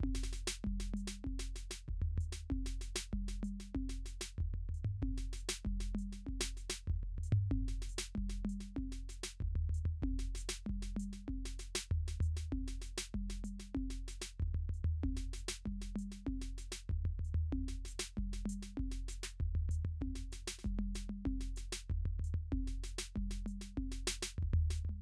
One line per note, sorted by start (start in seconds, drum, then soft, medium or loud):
0.01 kick soft
0.01 high tom loud
0.08 kick soft
0.15 snare soft
0.24 snare soft
0.33 snare soft
0.33 hi-hat pedal soft
0.48 snare medium
0.64 kick soft
0.64 mid tom medium
0.80 snare soft
0.94 hi-hat pedal soft
0.94 mid tom medium
1.08 snare medium
1.25 kick soft
1.25 high tom medium
1.40 snare medium
1.56 snare soft
1.56 hi-hat pedal medium
1.71 snare medium
1.88 kick soft
1.88 floor tom soft
2.02 floor tom medium
2.18 floor tom medium
2.18 hi-hat pedal soft
2.33 snare soft
2.51 kick soft
2.51 high tom medium
2.66 snare soft
2.82 snare soft
2.82 hi-hat pedal medium
2.96 snare medium
3.13 kick soft
3.13 mid tom medium
3.29 snare soft
3.43 hi-hat pedal soft
3.43 mid tom medium
3.60 snare soft
3.75 kick soft
3.75 high tom loud
3.90 snare soft
4.06 snare soft
4.06 hi-hat pedal soft
4.21 snare medium
4.39 kick soft
4.39 floor tom medium
4.54 floor tom medium
4.69 floor tom medium
4.75 hi-hat pedal soft
4.85 floor tom medium
5.03 kick soft
5.03 high tom medium
5.18 snare soft
5.33 snare soft
5.37 hi-hat pedal soft
5.49 snare medium
5.65 kick soft
5.65 mid tom medium
5.76 kick soft
5.81 snare soft
5.95 hi-hat pedal soft
5.95 mid tom medium
6.13 snare soft
6.27 kick soft
6.27 high tom medium
6.41 snare medium
6.57 snare soft
6.57 hi-hat pedal soft
6.70 snare medium
6.88 kick soft
6.88 floor tom medium
6.96 kick soft
7.04 floor tom soft
7.18 floor tom medium
7.24 hi-hat pedal medium
7.33 floor tom loud
7.52 kick soft
7.52 high tom loud
7.68 snare soft
7.82 snare soft
7.90 hi-hat pedal medium
7.99 snare medium
8.15 kick soft
8.15 mid tom medium
8.30 snare soft
8.45 mid tom medium
8.50 hi-hat pedal soft
8.61 snare soft
8.77 kick soft
8.77 high tom medium
8.84 kick soft
8.92 snare soft
9.10 snare soft
9.10 hi-hat pedal medium
9.24 snare medium
9.41 kick soft
9.41 floor tom medium
9.48 kick soft
9.56 floor tom medium
9.70 floor tom medium
9.75 hi-hat pedal soft
9.86 floor tom medium
10.03 kick soft
10.03 high tom loud
10.09 kick soft
10.19 snare soft
10.35 snare soft
10.35 hi-hat pedal medium
10.49 snare medium
10.67 kick soft
10.67 mid tom medium
10.76 kick soft
10.83 snare soft
10.97 hi-hat pedal medium
10.97 mid tom medium
11.13 snare soft
11.28 kick soft
11.28 high tom medium
11.46 snare soft
11.60 snare soft
11.60 hi-hat pedal medium
11.76 snare medium
11.92 kick soft
11.92 floor tom medium
12.08 snare soft
12.21 floor tom medium
12.21 hi-hat pedal soft
12.37 snare soft
12.53 kick soft
12.53 high tom medium
12.58 kick soft
12.68 snare soft
12.82 snare soft
12.82 hi-hat pedal soft
12.98 snare medium
13.15 kick soft
13.15 mid tom medium
13.30 snare soft
13.44 hi-hat pedal medium
13.44 mid tom medium
13.60 snare soft
13.75 kick soft
13.75 high tom loud
13.91 snare soft
14.08 snare soft
14.08 hi-hat pedal medium
14.22 snare medium
14.40 kick soft
14.40 floor tom medium
14.48 kick soft
14.55 floor tom medium
14.70 floor tom medium
14.74 hi-hat pedal soft
14.85 floor tom medium
15.04 kick soft
15.04 high tom medium
15.10 kick soft
15.17 snare soft
15.34 snare soft
15.34 hi-hat pedal soft
15.49 snare medium
15.66 kick soft
15.66 mid tom medium
15.73 kick soft
15.82 snare soft
15.96 hi-hat pedal soft
15.96 mid tom medium
16.12 snare soft
16.27 kick soft
16.27 high tom medium
16.42 snare soft
16.58 snare soft
16.58 hi-hat pedal medium
16.72 snare medium
16.90 kick soft
16.90 floor tom medium
17.06 floor tom medium
17.20 floor tom medium
17.25 hi-hat pedal soft
17.35 floor tom medium
17.53 kick soft
17.53 high tom loud
17.69 snare soft
17.85 snare soft
17.85 hi-hat pedal medium
18.00 snare medium
18.17 kick soft
18.17 mid tom medium
18.24 kick soft
18.33 snare soft
18.46 hi-hat pedal medium
18.46 mid tom medium
18.63 snare soft
18.78 kick soft
18.78 high tom medium
18.92 snare soft
19.09 snare soft
19.09 hi-hat pedal medium
19.24 snare medium
19.40 kick soft
19.40 floor tom medium
19.55 floor tom medium
19.70 floor tom medium
19.70 hi-hat pedal medium
19.85 floor tom medium
20.02 kick soft
20.02 high tom medium
20.08 kick soft
20.16 snare soft
20.33 snare soft
20.33 hi-hat pedal soft
20.48 snare medium
20.59 snare soft
20.65 kick soft
20.65 mid tom medium
20.79 mid tom medium
20.95 snare soft
20.95 hi-hat pedal soft
21.10 mid tom medium
21.26 kick soft
21.26 high tom loud
21.41 snare soft
21.57 snare soft
21.57 hi-hat pedal medium
21.73 snare medium
21.90 kick soft
21.90 floor tom medium
22.06 floor tom medium
22.20 floor tom medium
22.24 hi-hat pedal soft
22.35 floor tom medium
22.52 kick soft
22.52 high tom loud
22.59 kick soft
22.68 snare soft
22.84 snare soft
22.84 hi-hat pedal medium
22.99 snare medium
23.16 kick soft
23.16 mid tom medium
23.23 kick soft
23.31 snare soft
23.46 hi-hat pedal soft
23.46 mid tom medium
23.62 snare soft
23.78 kick soft
23.78 high tom medium
23.84 kick soft
23.92 snare soft
24.08 snare loud
24.08 hi-hat pedal medium
24.23 snare medium
24.39 floor tom medium
24.43 kick soft
24.54 floor tom loud
24.71 snare soft
24.71 hi-hat pedal soft
24.85 floor tom medium
24.90 mid tom soft